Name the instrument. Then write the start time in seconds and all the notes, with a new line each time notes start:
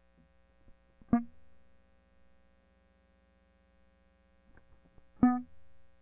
electric guitar
1.14 A#3
5.24 B3